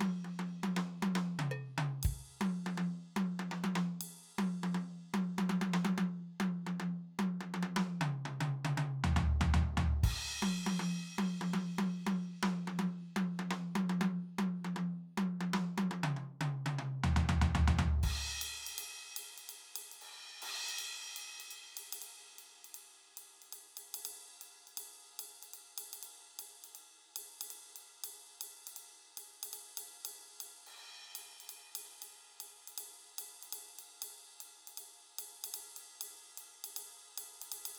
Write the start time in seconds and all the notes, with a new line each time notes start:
0.01 high tom
0.25 high tom
0.40 high tom
0.64 high tom
0.77 high tom
1.03 high tom
1.16 high tom
1.39 mid tom
1.52 percussion
1.78 mid tom
2.03 kick, ride
2.41 high tom
2.67 high tom
2.78 high tom
3.17 high tom
3.40 high tom
3.52 high tom
3.64 high tom
3.76 high tom
4.01 ride
4.39 high tom
4.64 high tom
4.75 high tom
5.14 high tom
5.39 high tom
5.50 high tom
5.62 high tom
5.74 high tom
5.85 high tom
5.98 high tom
6.41 high tom
6.67 high tom
6.80 high tom
7.19 high tom
7.41 high tom
7.54 high tom
7.63 high tom
7.77 high tom
8.01 mid tom
8.26 mid tom
8.41 mid tom
8.65 mid tom
8.78 mid tom
9.04 floor tom
9.17 floor tom
9.41 floor tom
9.54 floor tom
9.78 floor tom
10.04 kick, ride
10.43 high tom
10.67 high tom
10.80 high tom
11.19 high tom
11.42 high tom
11.54 high tom
11.79 high tom
12.07 high tom
12.43 high tom
12.68 high tom
12.79 high tom
13.17 high tom
13.40 high tom
13.51 high tom
13.76 high tom
13.90 high tom
14.01 high tom
14.39 high tom
14.65 high tom
14.77 high tom
15.18 high tom
15.41 high tom
15.54 high tom
15.78 high tom
15.91 high tom
16.04 mid tom
16.17 mid tom
16.41 mid tom
16.66 mid tom
16.79 mid tom
17.04 floor tom
17.17 floor tom
17.29 floor tom
17.42 floor tom
17.55 floor tom
17.68 floor tom
17.79 floor tom
18.04 kick, ride
18.42 ride
18.67 ride
18.79 ride
19.17 ride
19.38 ride
19.50 ride
19.76 ride
19.92 ride
20.02 ride
20.43 ride
20.69 ride
21.17 ride
21.41 ride
21.51 ride bell
21.77 ride
21.93 ride
22.02 ride
22.39 ride
22.65 ride
22.75 ride
23.18 ride
23.42 ride
23.53 ride
23.77 ride
23.95 ride
24.06 ride
24.42 ride
24.68 ride
25.20 ride
25.43 ride
25.54 ride
25.78 ride
25.94 ride
26.03 ride
26.39 ride
26.64 ride
26.76 ride
27.16 ride
27.41 ride
27.51 ride
27.76 ride
28.04 ride
28.41 ride
28.68 ride
28.77 ride
29.18 ride
29.43 ride
29.54 ride
29.78 ride
30.06 ride
30.41 ride
30.67 ride
30.77 ride
31.16 ride
31.41 ride
31.50 ride
31.76 ride
32.02 ride
32.41 ride
32.68 ride
32.78 ride
33.19 ride
33.43 ride
33.53 ride
33.79 ride
34.02 ride
34.41 ride
34.68 ride
34.78 ride
35.19 ride
35.44 ride
35.77 ride
36.01 ride
36.38 ride
36.65 ride
36.77 ride
37.18 ride
37.42 ride
37.52 ride
37.66 ride
37.75 ride